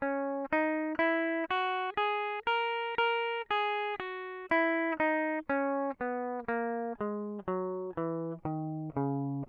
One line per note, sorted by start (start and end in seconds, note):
0.03 0.49 C#4
0.53 0.99 D#4
1.00 1.48 E4
1.51 1.96 F#4
1.98 2.44 G#4
2.48 2.98 A#4
2.99 3.46 A#4
3.51 3.99 G#4
4.01 4.50 F#4
4.52 4.99 E4
5.01 5.44 D#4
5.50 5.95 C#4
6.02 6.46 B3
6.49 6.97 A#3
7.02 7.45 G#3
7.49 7.95 F#3
7.99 8.38 E3
8.47 8.94 D#3
8.98 9.48 C#3